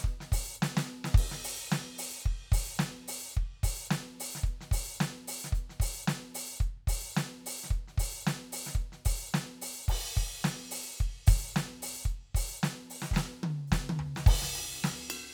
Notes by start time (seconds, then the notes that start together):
0.01 kick, hi-hat pedal
0.07 closed hi-hat
0.20 snare
0.32 open hi-hat, kick
0.55 hi-hat pedal
0.62 snare
0.77 snare
1.04 snare, hi-hat pedal
1.14 kick, crash
1.31 snare
1.44 open hi-hat
1.70 snare, hi-hat pedal
1.98 open hi-hat
2.22 kick, hi-hat pedal
2.52 open hi-hat, kick
2.77 snare, hi-hat pedal
3.08 open hi-hat
3.33 kick, hi-hat pedal
3.63 open hi-hat, kick
3.86 hi-hat pedal
3.91 snare
4.20 open hi-hat
4.35 snare, hi-hat pedal
4.43 kick, closed hi-hat
4.61 snare
4.71 open hi-hat, kick
4.96 hi-hat pedal
5.00 snare
5.28 open hi-hat
5.44 snare, hi-hat pedal
5.52 closed hi-hat, kick
5.70 snare
5.80 open hi-hat, kick
6.03 hi-hat pedal
6.07 snare
6.35 open hi-hat
6.56 kick, hi-hat pedal
6.87 open hi-hat, kick
7.13 snare, hi-hat pedal
7.46 open hi-hat
7.64 snare, hi-hat pedal
7.70 kick
7.88 snare
7.98 open hi-hat, kick
8.22 hi-hat pedal
8.27 snare
8.52 open hi-hat
8.66 snare
8.72 kick, hi-hat pedal
8.92 snare
9.05 open hi-hat, kick
9.28 hi-hat pedal
9.34 snare
9.62 open hi-hat
9.84 hi-hat pedal
9.88 kick, crash
10.16 open hi-hat, kick
10.40 snare, hi-hat pedal
10.71 open hi-hat
10.94 hi-hat pedal, open hi-hat
11.00 kick
11.27 open hi-hat, kick
11.51 hi-hat pedal
11.56 snare
11.82 open hi-hat
12.03 kick, hi-hat pedal
12.35 open hi-hat, kick
12.56 hi-hat pedal
12.63 snare
12.90 open hi-hat
13.02 snare
13.07 hi-hat pedal
13.11 kick, snare
13.16 snare
13.43 high tom
13.67 hi-hat pedal
13.72 kick, snare
13.89 high tom
13.99 floor tom
14.15 snare, hi-hat pedal
14.26 kick, crash
14.42 snare
14.55 snare, ride, floor tom
14.74 hi-hat pedal
14.84 snare
15.10 ride bell